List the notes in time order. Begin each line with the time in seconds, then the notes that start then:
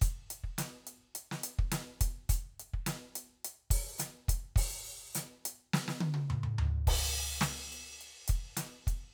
0.02 closed hi-hat, kick
0.31 closed hi-hat
0.44 kick
0.59 snare, closed hi-hat
0.88 closed hi-hat
1.16 closed hi-hat
1.32 snare
1.44 closed hi-hat
1.59 kick
1.72 snare, closed hi-hat
2.01 kick, closed hi-hat
2.30 closed hi-hat, kick
2.60 closed hi-hat
2.74 kick
2.87 snare, closed hi-hat
3.16 closed hi-hat
3.45 closed hi-hat
3.71 kick, open hi-hat
3.99 snare, closed hi-hat, hi-hat pedal
4.29 kick, closed hi-hat
4.56 open hi-hat, kick
5.15 snare, hi-hat pedal, open hi-hat
5.46 closed hi-hat
5.74 snare
5.89 snare
6.01 high tom
6.15 high tom
6.31 mid tom
6.44 mid tom
6.59 floor tom
6.88 kick, crash
7.16 closed hi-hat
7.42 closed hi-hat, snare
7.72 closed hi-hat
8.01 closed hi-hat
8.28 kick, closed hi-hat
8.57 snare, closed hi-hat
8.88 kick, closed hi-hat